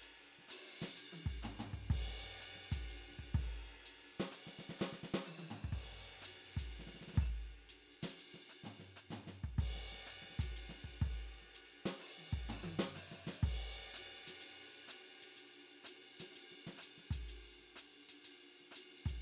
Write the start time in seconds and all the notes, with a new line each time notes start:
0.01 hi-hat pedal, ride
0.39 snare
0.48 hi-hat pedal, ride
0.82 snare, ride
0.94 hi-hat pedal, ride
1.12 high tom
1.26 kick
1.42 floor tom, hi-hat pedal
1.59 floor tom
1.63 hi-hat pedal
1.73 kick
1.90 kick, ride
2.08 snare
2.24 snare
2.40 hi-hat pedal, ride
2.56 snare
2.72 kick, ride
2.90 ride
3.11 snare
3.19 kick
3.35 kick, crash
3.72 snare
3.83 hi-hat pedal, ride
4.20 snare
4.32 hi-hat pedal, ride
4.47 snare
4.59 snare
4.69 snare
4.79 snare, hi-hat pedal
4.93 snare
5.03 snare
5.14 snare
5.24 hi-hat pedal, high tom
5.38 high tom
5.50 floor tom
5.64 kick
5.72 kick, crash, ride
6.22 hi-hat pedal, ride
6.57 kick, ride
6.66 hi-hat pedal, ride
6.79 snare
6.87 snare
6.95 snare
7.01 snare
7.08 snare
7.14 kick, snare
7.19 open hi-hat
7.65 snare
7.69 ride
8.03 snare, ride
8.19 ride
8.34 snare
8.49 hi-hat pedal
8.64 snare, floor tom
8.80 snare
8.96 hi-hat pedal
9.11 snare, floor tom
9.27 snare
9.44 kick
9.58 kick, ride
9.75 snare
9.92 snare
10.06 hi-hat pedal, ride
10.22 snare
10.30 snare
10.39 kick, ride
10.56 ride
10.69 snare
10.84 kick
11.02 kick, crash
11.42 snare
11.55 ride
11.86 snare, ride
11.99 hi-hat pedal, ride
12.18 high tom
12.33 kick
12.49 floor tom, hi-hat pedal
12.63 open hi-hat, high tom
12.79 snare
12.95 snare, hi-hat pedal
13.12 snare
13.27 snare
13.43 kick, ride
13.72 snare
13.78 snare
13.82 snare
13.85 snare
13.87 snare
13.94 hi-hat pedal, ride
14.27 snare, ride
14.40 hi-hat pedal, ride
14.88 hi-hat pedal, ride
15.22 snare, ride
15.37 ride
15.84 hi-hat pedal, ride
16.20 snare, ride
16.31 hi-hat pedal
16.36 ride
16.52 snare
16.67 snare
16.78 hi-hat pedal
16.82 ride
16.98 snare
17.11 kick, ride
17.21 hi-hat pedal
17.28 ride
17.59 snare
17.76 hi-hat pedal, ride
18.09 ride
18.24 ride
18.61 snare
18.65 snare
18.71 hi-hat pedal
18.76 ride
19.06 kick, ride